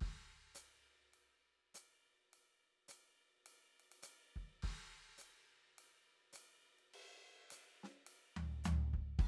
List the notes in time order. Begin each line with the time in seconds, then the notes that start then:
0.01 kick, crash
0.55 hi-hat pedal, ride
1.14 ride
1.75 hi-hat pedal, ride
2.34 ride
2.89 hi-hat pedal, ride
3.46 ride
3.80 ride
3.92 ride
4.03 hi-hat pedal, ride
4.36 kick
4.63 kick, crash
5.18 hi-hat pedal, ride
5.79 ride
6.33 hi-hat pedal, ride
6.62 ride
6.79 ride
6.94 ride
7.51 hi-hat pedal, ride
7.84 snare
8.07 ride
8.37 floor tom
8.64 floor tom, hi-hat pedal
8.94 kick
9.19 kick, crash